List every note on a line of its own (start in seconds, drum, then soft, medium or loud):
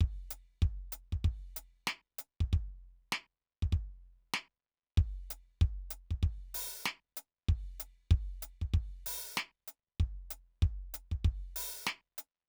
0.01 kick medium
0.06 crash soft
0.31 closed hi-hat loud
0.62 kick medium
0.93 closed hi-hat loud
1.13 kick medium
1.25 kick medium
1.25 crash soft
1.57 open hi-hat loud
1.88 snare loud
1.88 hi-hat pedal medium
2.19 closed hi-hat loud
2.41 kick medium
2.53 kick medium
3.13 snare loud
3.63 kick medium
3.73 kick medium
4.34 snare loud
4.98 kick medium
4.98 crash soft
5.31 closed hi-hat loud
5.62 kick medium
5.91 closed hi-hat loud
6.11 kick soft
6.23 kick medium
6.23 crash soft
6.55 open hi-hat loud
6.86 snare loud
6.86 hi-hat pedal medium
7.17 closed hi-hat loud
7.49 kick medium
7.49 crash soft
7.80 closed hi-hat loud
8.11 kick medium
8.11 crash soft
8.43 closed hi-hat loud
8.62 kick soft
8.74 kick medium
8.74 crash soft
9.07 open hi-hat loud
9.38 snare loud
9.38 hi-hat pedal medium
9.68 closed hi-hat loud
10.00 kick medium
10.31 closed hi-hat loud
10.63 kick medium
10.94 closed hi-hat loud
11.12 kick soft
11.25 kick medium
11.29 crash soft
11.56 open hi-hat loud
11.87 snare loud
11.87 hi-hat pedal medium
12.18 closed hi-hat loud